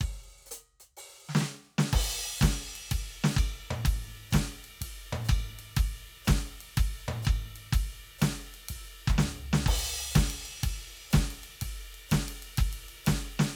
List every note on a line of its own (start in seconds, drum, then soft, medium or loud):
0.01 open hi-hat medium
0.01 kick loud
0.47 hi-hat pedal medium
0.52 closed hi-hat loud
0.81 closed hi-hat soft
0.98 open hi-hat medium
1.30 snare medium
1.35 snare loud
1.35 hi-hat pedal medium
1.42 snare medium
1.79 snare loud
1.94 kick loud
1.94 crash loud
2.39 kick loud
2.39 snare loud
2.39 hi-hat pedal medium
2.44 ride loud
2.76 ride medium
2.92 kick loud
2.92 ride loud
3.25 snare loud
3.31 hi-hat pedal medium
3.37 kick loud
3.37 ride bell loud
3.71 high tom loud
3.86 kick loud
3.86 ride loud
4.31 kick loud
4.31 snare loud
4.31 hi-hat pedal medium
4.31 ride loud
4.65 ride medium
4.82 kick medium
4.82 ride loud
5.13 high tom loud
5.25 hi-hat pedal medium
5.30 kick loud
5.30 ride bell loud
5.60 ride medium
5.77 kick loud
5.77 ride loud
6.26 kick loud
6.26 snare loud
6.26 hi-hat pedal medium
6.26 ride loud
6.61 ride medium
6.78 kick loud
6.78 ride loud
7.09 high tom loud
7.23 hi-hat pedal medium
7.23 ride bell loud
7.28 kick loud
7.57 ride medium
7.73 kick loud
7.73 ride loud
8.19 kick medium
8.19 snare loud
8.19 hi-hat pedal medium
8.19 ride loud
8.55 ride medium
8.69 kick medium
8.69 ride loud
9.08 kick loud
9.08 floor tom loud
9.08 hi-hat pedal medium
9.19 snare loud
9.54 snare loud
9.67 kick loud
9.67 crash loud
9.99 ride medium
10.12 hi-hat pedal medium
10.16 kick loud
10.16 snare loud
10.16 ride loud
10.31 ride loud
10.46 snare soft
10.46 ride medium
10.50 snare soft
10.52 snare soft
10.64 kick loud
10.64 ride loud
10.98 ride soft
11.11 kick loud
11.11 snare loud
11.11 hi-hat pedal medium
11.11 ride loud
11.31 ride medium
11.44 ride medium
11.48 snare soft
11.51 snare soft
11.62 kick medium
11.62 ride loud
11.95 ride medium
12.09 kick loud
12.09 snare loud
12.09 hi-hat pedal medium
12.09 ride loud
12.29 ride loud
12.43 ride medium
12.57 kick loud
12.57 snare soft
12.57 ride loud
12.74 ride medium
12.89 ride medium
13.05 kick loud
13.05 snare loud
13.05 hi-hat pedal medium
13.05 ride loud
13.40 snare loud